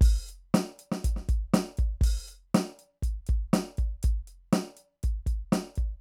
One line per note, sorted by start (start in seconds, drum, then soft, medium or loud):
0.01 open hi-hat loud
0.01 kick loud
0.28 closed hi-hat medium
0.28 hi-hat pedal medium
0.54 closed hi-hat loud
0.54 snare loud
0.78 closed hi-hat medium
0.78 hi-hat pedal soft
0.92 snare medium
1.04 closed hi-hat loud
1.04 kick medium
1.16 snare soft
1.29 closed hi-hat medium
1.29 kick medium
1.54 closed hi-hat loud
1.54 snare loud
1.77 closed hi-hat medium
1.77 kick medium
2.01 open hi-hat loud
2.01 kick medium
2.28 open hi-hat medium
2.28 hi-hat pedal medium
2.55 closed hi-hat loud
2.55 snare loud
2.79 closed hi-hat medium
3.03 closed hi-hat medium
3.03 kick medium
3.27 closed hi-hat medium
3.27 kick medium
3.53 closed hi-hat loud
3.53 snare loud
3.77 closed hi-hat soft
3.77 kick medium
4.03 closed hi-hat loud
4.03 kick medium
4.27 closed hi-hat medium
4.53 closed hi-hat loud
4.53 snare loud
4.77 closed hi-hat medium
5.03 closed hi-hat medium
5.03 kick medium
5.26 closed hi-hat medium
5.26 kick medium
5.52 closed hi-hat medium
5.52 snare loud
5.76 closed hi-hat soft
5.76 kick medium